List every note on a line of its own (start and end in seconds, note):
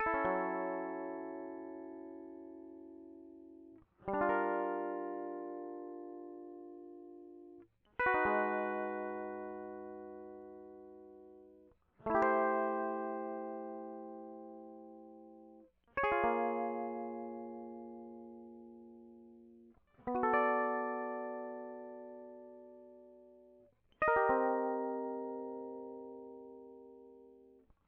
0.00 2.32 A4
0.07 3.83 E4
0.14 3.81 C#4
0.26 3.81 F#3
4.09 7.45 G3
4.14 7.65 D4
4.21 7.66 F4
4.30 6.83 A#4
8.00 11.35 B4
8.07 11.71 F#4
8.15 11.73 D#4
8.26 11.71 G#3
12.07 15.66 A3
12.07 15.69 E4
12.15 15.62 G4
12.22 15.65 C5
15.98 18.30 C#5
16.04 18.86 G#4
16.12 19.77 F4
16.24 19.75 A#3
20.08 23.69 B3
20.15 23.67 F#4
20.24 23.09 A4
20.34 23.66 D5
24.02 26.30 D#5
24.08 27.62 A#4
24.17 27.65 G4
24.30 27.68 C4